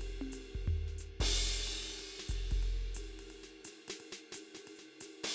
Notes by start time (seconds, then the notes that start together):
0.01 ride
0.21 high tom
0.32 hi-hat pedal, ride
0.55 kick
0.67 floor tom
0.88 snare
0.98 snare, hi-hat pedal
1.20 kick, ride
1.58 snare
1.65 hi-hat pedal, ride
1.83 hi-hat pedal
1.90 ride
1.99 ride
2.09 snare
2.19 snare
2.28 kick, hi-hat pedal, ride
2.51 kick, ride
2.63 ride
2.95 hi-hat pedal, ride
3.19 ride
3.30 ride
3.43 snare
3.65 snare, hi-hat pedal, ride
3.88 snare, ride
4.00 ride
4.12 snare
4.32 snare, hi-hat pedal, ride
4.55 snare, hi-hat pedal, ride
4.67 ride
4.76 snare, hi-hat pedal
5.00 snare, hi-hat pedal, ride
5.24 snare, ride